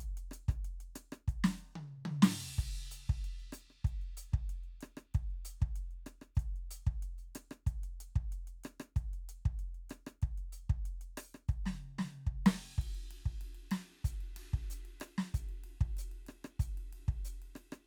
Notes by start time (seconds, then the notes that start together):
0.01 closed hi-hat
0.18 closed hi-hat
0.32 cross-stick, closed hi-hat
0.49 kick, cross-stick
0.65 closed hi-hat
0.81 closed hi-hat
0.96 cross-stick, closed hi-hat
1.13 cross-stick
1.28 kick, closed hi-hat
1.45 snare
1.59 closed hi-hat
1.76 high tom
2.06 high tom
2.23 snare, crash
2.59 kick, closed hi-hat
2.76 closed hi-hat
2.92 closed hi-hat
3.10 kick, snare
3.25 closed hi-hat
3.41 closed hi-hat
3.53 closed hi-hat, cross-stick
3.71 cross-stick
3.85 kick, closed hi-hat
4.02 closed hi-hat
4.18 closed hi-hat
4.33 kick, cross-stick
4.50 closed hi-hat
4.64 closed hi-hat
4.81 cross-stick, closed hi-hat
4.98 cross-stick
5.15 kick, closed hi-hat
5.31 closed hi-hat
5.46 closed hi-hat
5.61 kick, cross-stick
5.76 closed hi-hat
5.91 closed hi-hat
6.07 cross-stick, closed hi-hat
6.22 cross-stick
6.36 kick, hi-hat pedal
6.40 closed hi-hat
6.57 closed hi-hat
6.71 closed hi-hat
6.87 kick
7.03 closed hi-hat
7.19 closed hi-hat
7.36 cross-stick, closed hi-hat
7.52 cross-stick
7.67 kick, closed hi-hat
7.84 closed hi-hat
8.01 closed hi-hat
8.16 kick
8.33 closed hi-hat
8.48 closed hi-hat
8.64 cross-stick, closed hi-hat
8.80 cross-stick
8.97 kick, closed hi-hat
9.14 closed hi-hat
9.30 closed hi-hat
9.46 kick
9.60 closed hi-hat
9.75 closed hi-hat
9.90 cross-stick, closed hi-hat
10.07 cross-stick
10.22 kick, closed hi-hat
10.38 closed hi-hat
10.53 closed hi-hat
10.70 kick
10.86 closed hi-hat
11.02 closed hi-hat
11.18 cross-stick, open hi-hat
11.35 cross-stick
11.49 kick, hi-hat pedal
11.66 snare, high tom
11.99 snare, high tom
12.27 kick
12.47 snare, crash
12.79 kick, ride
12.95 ride
13.11 ride
13.26 kick
13.42 ride
13.55 ride
13.72 snare, ride
14.05 kick, hi-hat pedal, ride
14.21 ride
14.37 ride
14.54 kick
14.71 hi-hat pedal, ride
14.86 ride
15.01 cross-stick, ride
15.19 snare
15.35 kick, hi-hat pedal, ride
15.50 ride
15.64 ride
15.81 kick
15.98 hi-hat pedal, ride
16.12 ride
16.27 cross-stick, ride
16.45 cross-stick
16.60 kick, hi-hat pedal, ride
16.78 ride
16.93 ride
17.09 kick
17.25 hi-hat pedal, ride
17.43 ride
17.56 cross-stick, ride
17.73 cross-stick